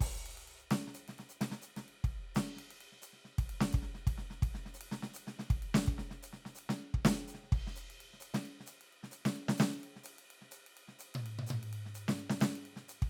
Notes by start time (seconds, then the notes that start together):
0.01 open hi-hat, kick, ride
0.26 ride
0.38 ride
0.48 ride
0.60 hi-hat pedal
0.71 snare, ride
0.87 snare
0.95 hi-hat pedal, ride
1.08 snare, ride
1.19 snare, ride
1.29 hi-hat pedal
1.41 snare, ride
1.52 snare
1.62 hi-hat pedal, ride
1.77 kick, snare, ride
1.89 ride
2.04 kick, ride
2.35 snare, hi-hat pedal, ride
2.56 snare, ride
2.71 ride
2.76 hi-hat pedal
2.81 ride
2.92 snare
3.02 hi-hat pedal, ride
3.13 snare
3.25 snare
3.39 kick, ride
3.50 ride
3.61 snare
3.72 kick, hi-hat pedal, ride
3.82 snare
3.95 snare
4.07 kick, ride
4.18 snare
4.30 snare
4.43 kick, ride
4.54 snare
4.66 snare
4.74 hi-hat pedal
4.81 ride
4.92 snare
5.03 snare
5.14 hi-hat pedal, ride
5.27 snare
5.39 snare
5.50 kick, ride
5.63 ride
5.75 snare
5.87 kick, ride
5.99 snare
6.11 snare
6.23 hi-hat pedal, ride
6.33 snare
6.46 snare
6.55 hi-hat pedal, ride
6.70 snare
6.94 kick
7.05 snare, ride
7.28 hi-hat pedal
7.34 snare
7.44 snare
7.53 kick, ride
7.67 snare
7.76 hi-hat pedal, ride
7.91 ride
8.01 ride
8.13 snare
8.21 hi-hat pedal, ride
8.34 snare, ride
8.41 hi-hat pedal
8.46 ride
8.60 snare
8.67 hi-hat pedal, ride
8.81 ride
8.88 hi-hat pedal
8.93 ride
9.03 snare
9.12 hi-hat pedal, ride
9.26 snare, ride
9.36 ride
9.49 snare
9.58 snare, hi-hat pedal, ride
9.74 ride
9.78 hi-hat pedal
9.84 ride
9.96 snare
10.04 hi-hat pedal, ride
10.19 ride
10.26 hi-hat pedal
10.31 ride
10.42 snare
10.52 hi-hat pedal, ride
10.67 ride
10.74 hi-hat pedal, ride
10.88 snare
10.99 hi-hat pedal, ride
11.15 high tom, ride
11.21 hi-hat pedal
11.26 ride
11.39 high tom
11.47 hi-hat pedal, high tom, ride
11.63 ride
11.69 hi-hat pedal
11.73 ride
11.86 snare
11.95 hi-hat pedal, ride
12.08 snare, ride
12.17 hi-hat pedal, ride
12.30 snare
12.41 snare, hi-hat pedal, ride
12.56 ride
12.66 ride
12.76 snare
12.89 hi-hat pedal, ride
13.02 kick, ride